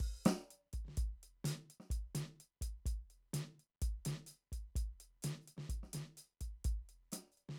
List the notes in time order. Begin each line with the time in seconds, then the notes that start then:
0.00 open hi-hat, kick
0.25 closed hi-hat, snare
0.50 closed hi-hat
0.73 kick, closed hi-hat
0.85 snare
0.88 snare
0.97 closed hi-hat, kick
1.23 closed hi-hat
1.44 open hi-hat, snare, hi-hat pedal
1.70 closed hi-hat
1.80 snare
1.90 closed hi-hat, kick
2.14 closed hi-hat, snare
2.40 closed hi-hat
2.61 closed hi-hat, kick
2.85 closed hi-hat, kick
3.10 closed hi-hat
3.33 closed hi-hat, snare
3.59 closed hi-hat
3.81 closed hi-hat, kick
4.05 closed hi-hat, snare
4.26 hi-hat pedal
4.30 closed hi-hat
4.52 closed hi-hat, kick
4.75 closed hi-hat, kick
5.00 closed hi-hat
5.22 closed hi-hat, snare, hi-hat pedal
5.41 hi-hat pedal
5.47 closed hi-hat
5.57 snare
5.69 closed hi-hat, kick
5.83 snare
5.93 closed hi-hat, snare
6.17 hi-hat pedal
6.40 closed hi-hat, kick
6.64 closed hi-hat, kick
6.88 closed hi-hat
7.12 closed hi-hat, snare, hi-hat pedal
7.31 hi-hat pedal
7.37 closed hi-hat
7.48 snare